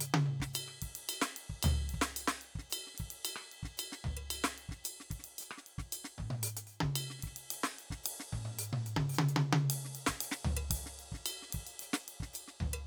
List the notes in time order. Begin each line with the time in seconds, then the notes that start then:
0.01 closed hi-hat, hi-hat pedal
0.14 high tom
0.26 mid tom
0.40 kick, snare
0.54 hi-hat pedal, ride bell
0.68 cross-stick
0.82 kick, ride
0.96 ride
1.09 hi-hat pedal, ride bell
1.22 snare
1.37 ride
1.50 kick
1.63 floor tom, hi-hat pedal, ride bell
1.90 ride
1.94 kick
2.00 kick, snare
2.17 hi-hat pedal, ride bell
2.28 snare
2.42 ride
2.56 kick, snare
2.70 hi-hat pedal, ride bell
2.87 snare
2.95 snare, ride
3.00 kick
3.07 snare, ride
3.11 snare
3.25 hi-hat pedal, ride bell
3.36 cross-stick
3.42 cross-stick
3.52 ride
3.63 kick, snare
3.78 hi-hat pedal, ride bell
3.93 snare
4.04 kick, floor tom
4.17 percussion
4.31 hi-hat pedal, ride bell
4.44 snare
4.58 ride
4.69 kick, snare
4.85 hi-hat pedal, ride bell
5.01 snare
5.10 kick, snare, ride
5.20 snare
5.25 ride
5.39 hi-hat pedal, ride bell
5.51 cross-stick
5.58 snare
5.67 ride
5.78 kick, snare
5.93 hi-hat pedal, ride bell
6.05 snare
6.18 kick, mid tom
6.26 kick
6.31 mid tom
6.43 closed hi-hat, hi-hat pedal
6.57 closed hi-hat
6.67 closed hi-hat
6.81 kick, high tom
6.96 hi-hat pedal, ride bell
7.10 snare
7.19 snare, ride
7.24 kick, snare
7.33 snare, ride
7.51 hi-hat pedal, ride
7.64 snare
7.79 ride
7.91 kick, snare
8.04 hi-hat pedal, ride
8.20 snare
8.33 kick, mid tom
8.39 kick
8.45 mid tom
8.59 closed hi-hat, hi-hat pedal
8.73 mid tom
8.87 closed hi-hat
8.97 kick, high tom
9.10 closed hi-hat
9.14 hi-hat pedal
9.19 high tom
9.29 closed hi-hat
9.37 high tom
9.53 high tom
9.70 hi-hat pedal, ride
9.85 snare
9.94 hi-hat pedal, ride
10.07 kick, snare
10.21 hi-hat pedal, ride
10.32 snare
10.45 floor tom
10.57 percussion
10.71 kick, hi-hat pedal, ride
10.84 kick, snare
10.99 ride
11.12 kick, snare
11.26 hi-hat pedal, ride bell
11.43 snare
11.50 snare, ride
11.55 kick
11.59 snare
11.67 ride bell
11.80 hi-hat pedal, ride
11.94 snare
12.08 ride
12.21 kick, snare
12.34 hi-hat pedal, ride bell
12.48 snare
12.61 kick, floor tom
12.69 kick
12.74 percussion